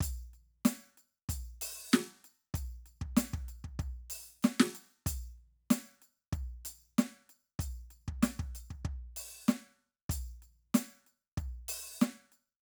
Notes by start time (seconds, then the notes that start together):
0.01 kick, percussion
0.34 percussion
0.66 snare, percussion
0.98 percussion
1.29 kick, percussion
1.62 percussion
1.93 snare, percussion
2.25 percussion
2.54 kick, percussion
2.86 percussion
3.02 kick
3.17 snare, percussion
3.34 kick
3.49 percussion
3.65 kick
3.80 kick, percussion
4.10 percussion
4.43 snare, percussion
4.60 snare
4.75 percussion
5.07 kick, percussion
5.38 percussion
5.71 snare, percussion
6.02 percussion
6.33 kick, percussion
6.66 percussion
6.99 snare, percussion
7.30 percussion
7.60 kick, percussion
7.91 percussion
8.08 kick
8.23 snare, percussion
8.40 kick
8.55 percussion
8.71 kick
8.85 kick
9.17 percussion
9.49 snare, percussion
10.10 kick, percussion
10.43 percussion
10.75 snare, percussion
11.07 percussion
11.38 kick, percussion
11.69 percussion
12.02 snare, percussion
12.32 percussion